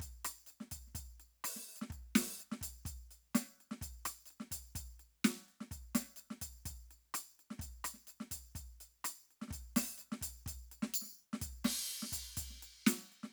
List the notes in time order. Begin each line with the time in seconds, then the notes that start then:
0.01 kick, percussion
0.26 cross-stick, percussion
0.48 percussion
0.51 percussion
0.62 snare
0.73 kick, percussion
0.88 snare
0.96 kick, percussion
1.21 percussion
1.45 cross-stick, percussion
1.57 snare
1.71 percussion
1.77 percussion
1.83 snare
1.91 kick, percussion
2.16 snare, percussion
2.41 percussion
2.53 snare
2.62 kick, percussion
2.87 kick, percussion
3.12 percussion
3.36 snare, percussion
3.62 percussion
3.72 snare
3.83 kick, percussion
4.06 cross-stick, percussion
4.27 percussion
4.32 percussion
4.41 snare
4.52 kick, percussion
4.76 kick, percussion
5.01 percussion
5.26 snare, percussion
5.44 percussion
5.50 percussion
5.62 snare
5.72 kick, percussion
5.96 snare, percussion
6.17 percussion
6.22 percussion
6.32 snare
6.43 kick, percussion
6.67 kick, percussion
6.72 kick
6.92 percussion
7.15 cross-stick, percussion
7.40 percussion
7.52 snare
7.60 kick, snare, percussion
7.85 cross-stick, percussion
7.95 snare
8.08 percussion
8.11 percussion
8.21 snare
8.32 kick, percussion
8.56 kick, percussion
8.82 percussion
9.06 cross-stick, percussion
9.32 percussion
9.43 snare
9.49 kick, snare
9.54 percussion
9.77 snare, percussion
9.99 percussion
10.02 percussion
10.13 snare
10.23 kick, percussion
10.47 kick, percussion
10.53 kick
10.73 percussion
10.84 snare
10.95 percussion
11.03 snare
11.06 snare
11.34 snare
11.43 kick, percussion
11.66 snare, crash
11.86 percussion
11.92 percussion
12.03 snare
12.13 kick, percussion
12.38 kick, percussion
12.51 snare
12.56 snare
12.64 percussion
12.88 snare, percussion
13.13 percussion
13.25 snare